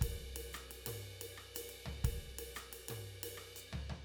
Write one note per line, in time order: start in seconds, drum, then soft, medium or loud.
0.01 kick medium
0.01 ride loud
0.36 ride loud
0.53 cross-stick medium
0.53 hi-hat pedal medium
0.71 ride medium
0.86 mid tom medium
0.86 ride loud
1.21 ride loud
1.38 cross-stick soft
1.55 hi-hat pedal medium
1.55 ride loud
1.69 ride medium
1.86 floor tom medium
2.04 kick medium
2.04 ride loud
2.38 ride loud
2.55 cross-stick medium
2.55 hi-hat pedal medium
2.73 ride medium
2.88 mid tom medium
2.88 ride loud
3.23 ride loud
3.37 cross-stick medium
3.56 hi-hat pedal medium
3.56 ride bell medium
3.73 floor tom medium
3.90 floor tom medium